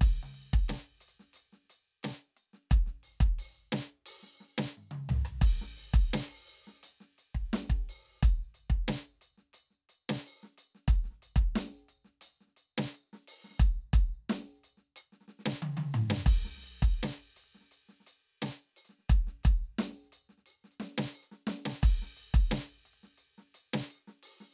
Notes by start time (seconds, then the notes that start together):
0.01 kick, crash
0.23 high tom
0.35 closed hi-hat
0.54 kick
0.69 closed hi-hat, snare
1.01 closed hi-hat
1.09 closed hi-hat
1.20 snare
1.34 closed hi-hat, hi-hat pedal
1.53 snare
1.64 snare
1.70 closed hi-hat
2.04 closed hi-hat, snare
2.37 closed hi-hat
2.50 snare, closed hi-hat
2.71 kick, percussion
2.87 snare
3.04 percussion
3.21 kick
3.39 percussion
3.73 snare
4.06 percussion
4.23 snare
4.41 snare
4.58 snare
4.78 mid tom
4.91 high tom
5.10 floor tom
5.25 cross-stick
5.42 kick, crash
5.62 snare
5.77 percussion
5.94 kick
6.14 snare, percussion
6.48 percussion
6.67 snare
6.84 closed hi-hat
7.01 snare
7.19 closed hi-hat
7.35 kick
7.54 closed hi-hat, snare
7.70 kick
7.89 percussion
8.18 hi-hat pedal
8.23 closed hi-hat, kick
8.55 closed hi-hat
8.70 kick
8.88 closed hi-hat, snare
9.22 closed hi-hat
9.38 snare
9.54 closed hi-hat, hi-hat pedal
9.71 snare
9.89 closed hi-hat
10.10 snare
10.27 percussion
10.43 snare
10.58 closed hi-hat
10.75 snare
10.88 closed hi-hat, kick
11.05 snare
11.11 snare
11.23 closed hi-hat
11.36 kick
11.56 closed hi-hat, snare
11.79 hi-hat pedal
11.89 closed hi-hat
12.05 snare
12.22 closed hi-hat
12.41 snare
12.47 snare
12.57 closed hi-hat
12.78 snare
12.95 closed hi-hat
13.13 snare
13.28 percussion
13.45 snare
13.51 snare
13.58 closed hi-hat, kick, snare, hi-hat pedal
13.68 snare
13.72 snare
13.75 snare
13.83 snare
13.94 closed hi-hat, kick
14.30 closed hi-hat, snare
14.56 hi-hat pedal
14.64 closed hi-hat
14.78 snare
14.96 hi-hat pedal, percussion
15.13 snare
15.21 snare, hi-hat pedal
15.28 snare
15.39 snare
15.46 snare
15.53 hi-hat pedal
15.63 high tom
15.77 high tom
15.95 mid tom
16.11 snare
16.26 kick, crash
16.45 snare
16.58 snare
16.63 closed hi-hat
16.83 kick
17.03 snare, percussion
17.37 closed hi-hat
17.44 closed hi-hat
17.55 snare
17.61 snare
17.72 closed hi-hat
17.89 snare, hi-hat pedal
18.01 snare
18.07 closed hi-hat
18.42 closed hi-hat, snare
18.77 hi-hat pedal, percussion
18.85 closed hi-hat
18.90 snare
18.99 snare
19.09 closed hi-hat, kick
19.28 snare
19.44 closed hi-hat, kick
19.79 closed hi-hat, snare
20.04 snare, hi-hat pedal
20.13 closed hi-hat
20.30 snare
20.38 snare
20.46 hi-hat pedal, percussion
20.65 snare
20.71 hi-hat pedal
20.80 snare
20.98 snare
21.14 percussion
21.23 hi-hat pedal
21.32 snare
21.47 snare, hi-hat pedal
21.66 snare
21.82 kick, crash
21.93 hi-hat pedal
22.02 snare
22.17 closed hi-hat
22.35 kick
22.52 closed hi-hat, snare
22.72 hi-hat pedal
22.86 closed hi-hat
22.94 closed hi-hat
23.04 snare
23.18 closed hi-hat
23.38 snare
23.55 closed hi-hat
23.74 snare
23.91 percussion
23.96 hi-hat pedal
24.08 snare
24.23 percussion
24.41 snare